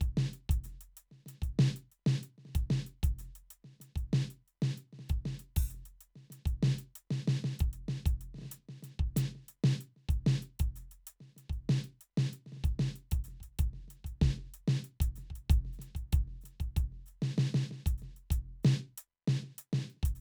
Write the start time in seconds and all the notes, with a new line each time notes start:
0.01 kick, closed hi-hat
0.17 snare
0.33 closed hi-hat
0.49 open hi-hat, kick
0.64 snare, hi-hat pedal
0.81 closed hi-hat
0.97 closed hi-hat
1.12 snare
1.26 snare, closed hi-hat
1.42 kick, closed hi-hat
1.59 snare
1.76 closed hi-hat
1.92 closed hi-hat
2.07 snare
2.23 closed hi-hat
2.38 snare
2.45 snare
2.49 snare
2.55 kick, closed hi-hat
2.71 snare
2.87 closed hi-hat
3.03 open hi-hat, kick
3.19 snare, hi-hat pedal
3.36 closed hi-hat
3.51 closed hi-hat
3.64 snare
3.81 snare, closed hi-hat
3.96 kick, closed hi-hat
4.13 snare
4.31 closed hi-hat
4.48 closed hi-hat
4.62 snare
4.78 closed hi-hat
4.93 snare
4.99 snare
5.10 kick, closed hi-hat
5.26 snare
5.39 closed hi-hat
5.56 open hi-hat, kick
5.70 hi-hat pedal
5.75 snare
5.86 closed hi-hat
6.01 closed hi-hat
6.16 snare
6.30 snare, closed hi-hat
6.46 kick, closed hi-hat
6.63 snare
6.67 snare
6.79 closed hi-hat
6.96 closed hi-hat
7.11 snare
7.28 snare
7.44 snare
7.59 kick, closed hi-hat
7.73 closed hi-hat
7.89 snare
8.06 kick, closed hi-hat
8.21 closed hi-hat
8.35 snare
8.39 snare
8.42 snare
8.44 snare
8.46 snare
8.52 closed hi-hat
8.69 snare
8.83 snare, closed hi-hat
8.99 kick
9.17 snare, closed hi-hat
9.35 snare
9.49 closed hi-hat
9.64 snare
9.81 closed hi-hat
9.97 snare
10.09 kick, closed hi-hat
10.27 snare
10.42 closed hi-hat
10.60 kick, open hi-hat
10.76 hi-hat pedal
10.91 closed hi-hat
11.07 closed hi-hat
11.21 snare
11.37 snare, closed hi-hat
11.50 kick, closed hi-hat
11.69 snare
11.84 closed hi-hat
12.01 closed hi-hat
12.18 snare
12.33 closed hi-hat
12.46 snare
12.52 snare
12.57 snare
12.64 kick, closed hi-hat
12.80 snare
12.96 closed hi-hat
13.12 kick, open hi-hat
13.24 hi-hat pedal
13.28 snare
13.41 kick, closed hi-hat
13.59 kick, closed hi-hat
13.74 snare
13.88 snare, closed hi-hat
14.05 kick, closed hi-hat
14.22 kick, snare
14.38 snare
14.54 closed hi-hat
14.68 snare
14.84 closed hi-hat
15.01 open hi-hat, kick
15.16 snare, hi-hat pedal
15.30 kick
15.36 closed hi-hat
15.50 open hi-hat, kick
15.65 snare
15.73 hi-hat pedal
15.79 snare, closed hi-hat
15.95 kick, closed hi-hat
16.13 open hi-hat, kick
16.28 snare
16.41 snare, hi-hat pedal
16.46 closed hi-hat
16.60 kick, closed hi-hat
16.77 open hi-hat, kick
16.92 snare
17.06 closed hi-hat, hi-hat pedal
17.22 snare
17.38 snare
17.55 snare
17.71 snare
17.86 open hi-hat, kick
17.98 hi-hat pedal
18.02 snare
18.17 closed hi-hat
18.31 open hi-hat, kick
18.63 snare, hi-hat pedal
18.79 snare
18.98 closed hi-hat
19.28 snare
19.43 snare
19.58 closed hi-hat
19.73 snare
19.79 snare
19.90 closed hi-hat
19.97 snare
20.03 open hi-hat, kick
20.15 hi-hat pedal